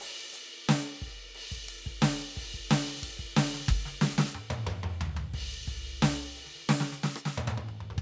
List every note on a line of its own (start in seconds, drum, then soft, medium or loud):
0.01 open hi-hat medium
0.01 ride loud
0.33 hi-hat pedal medium
0.33 ride medium
0.70 snare loud
0.70 ride medium
1.02 kick medium
1.02 ride medium
1.36 ride loud
1.52 kick medium
1.69 ride loud
1.87 kick medium
2.02 snare loud
2.02 ride loud
2.19 snare soft
2.25 snare soft
2.30 snare soft
2.36 kick medium
2.36 ride medium
2.55 kick medium
2.71 snare loud
2.71 ride loud
2.87 snare soft
3.03 kick medium
3.03 ride loud
3.20 kick medium
3.37 snare loud
3.37 ride loud
3.55 snare medium
3.61 snare soft
3.69 kick loud
3.69 ride loud
3.86 snare medium
4.02 snare loud
4.19 snare loud
4.35 high tom medium
4.51 high tom loud
4.68 mid tom loud
4.84 mid tom loud
5.02 floor tom loud
5.17 floor tom loud
5.35 kick medium
5.35 ride loud
5.68 kick medium
5.68 ride medium
6.03 snare loud
6.03 ride medium
6.37 ride medium
6.47 snare soft
6.51 snare soft
6.55 snare soft
6.58 snare soft
6.62 snare soft
6.70 snare loud
6.70 hi-hat pedal medium
6.81 snare loud
6.93 snare medium
7.04 snare loud
7.17 cross-stick medium
7.26 snare medium
7.38 high tom loud
7.48 high tom loud
7.58 high tom medium
7.69 mid tom soft
7.81 mid tom medium
7.91 mid tom medium
7.99 kick loud